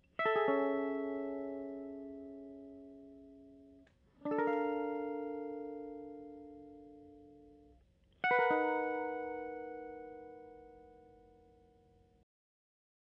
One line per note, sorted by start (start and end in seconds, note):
0.20 3.85 E5
0.26 2.40 A4
0.36 3.82 G#4
0.49 3.87 C#4
4.13 4.19 A#4
4.26 7.80 D4
4.32 7.76 A4
4.39 7.42 A#4
4.48 7.47 F5
8.25 11.20 F#5
8.32 11.31 B4
8.40 12.46 A#4
8.51 11.94 D#4